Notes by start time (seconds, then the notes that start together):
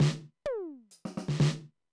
0.00 snare
0.46 closed hi-hat, high tom
0.91 hi-hat pedal
1.05 snare
1.18 snare
1.28 snare
1.40 snare